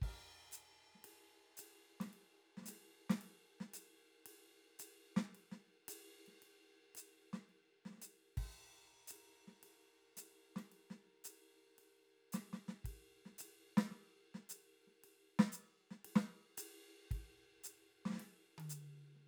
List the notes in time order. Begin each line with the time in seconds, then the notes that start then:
0.02 kick, crash
0.52 hi-hat pedal, ride
0.95 snare
1.05 ride
1.57 hi-hat pedal, ride
2.01 snare, ride
2.07 snare
2.14 ride
2.58 snare
2.62 snare
2.65 snare, hi-hat pedal
2.68 snare, ride
2.72 snare
3.10 snare, ride
3.22 ride
3.61 snare
3.74 hi-hat pedal, ride
4.26 ride
4.80 hi-hat pedal, ride
5.17 snare
5.35 ride
5.52 snare
5.89 hi-hat pedal, ride
6.27 snare, ride
6.33 snare
6.43 ride
6.96 hi-hat pedal, ride
7.34 snare
7.50 ride
7.86 snare
7.91 snare
7.95 snare
7.98 snare
8.02 hi-hat pedal, ride
8.38 kick, ride, crash
8.53 ride
9.08 hi-hat pedal, ride
9.48 snare
9.64 ride
10.17 snare, hi-hat pedal, ride
10.56 snare, ride
10.72 ride
10.91 snare
11.25 hi-hat pedal, ride
11.79 ride
12.33 snare, hi-hat pedal, ride
12.53 snare
12.69 snare
12.85 kick, ride
13.26 snare
13.32 snare
13.39 hi-hat pedal, ride
13.78 snare, ride
13.92 snare
14.35 snare
14.50 hi-hat pedal, ride
14.87 snare
15.04 ride
15.40 snare, ride
15.53 hi-hat pedal, ride
15.91 snare
16.05 ride
16.16 snare
16.58 hi-hat pedal, ride
17.03 crash
17.11 kick, ride
17.64 hi-hat pedal, ride
18.06 snare
18.10 snare
18.14 snare
18.16 snare
18.19 snare, ride
18.58 high tom, ride
18.70 hi-hat pedal, ride
19.16 snare